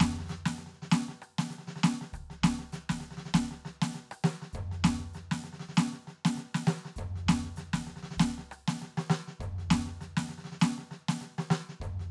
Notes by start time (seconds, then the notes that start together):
0.01 kick, snare
0.14 snare
0.20 snare
0.25 snare
0.30 snare, hi-hat pedal
0.47 snare
0.59 snare
0.67 snare
0.74 snare
0.83 snare
0.91 snare, hi-hat pedal
1.09 snare
1.23 cross-stick
1.40 snare
1.51 snare, hi-hat pedal
1.59 snare
1.67 snare
1.69 snare
1.84 snare
2.02 snare
2.14 kick, cross-stick, hi-hat pedal
2.20 kick
2.23 kick
2.31 snare
2.44 kick, snare
2.54 kick
2.60 snare
2.73 snare, hi-hat pedal
2.90 kick, snare
3.01 snare
3.12 snare
3.18 snare
3.26 snare
3.35 kick, snare, hi-hat pedal
3.41 kick
3.52 snare
3.66 snare
3.83 snare
3.93 snare, hi-hat pedal
4.12 cross-stick
4.25 snare
4.43 snare
4.54 kick, floor tom, hi-hat pedal
4.61 kick
4.64 kick
4.72 snare
4.85 kick, snare
4.92 kick
5.00 snare
5.15 snare, hi-hat pedal
5.32 snare
5.45 snare
5.54 snare
5.61 snare
5.70 snare
5.75 snare, hi-hat pedal
5.94 snare
6.08 snare
6.26 snare
6.36 snare, hi-hat pedal
6.56 snare
6.68 snare
6.86 snare
6.97 kick, floor tom, hi-hat pedal
7.07 kick
7.17 snare
7.28 kick, snare
7.35 kick
7.44 snare
7.57 snare, hi-hat pedal
7.74 kick, snare
7.88 snare
7.97 snare
8.04 snare
8.12 snare
8.18 kick, snare, hi-hat pedal
8.24 kick
8.39 snare
8.52 cross-stick
8.69 snare
8.80 snare, hi-hat pedal
8.98 snare
9.11 snare
9.29 snare
9.41 kick, floor tom, hi-hat pedal
9.47 kick
9.50 kick
9.59 snare
9.71 kick, snare
9.87 snare
10.02 snare, hi-hat pedal
10.18 snare
10.30 snare
10.39 snare
10.45 snare
10.53 snare
10.61 snare, hi-hat pedal
10.79 snare
10.92 snare
11.10 snare
11.21 snare, hi-hat pedal
11.39 snare
11.52 snare
11.70 snare
11.81 kick, floor tom, hi-hat pedal
11.88 kick
11.91 kick
12.01 snare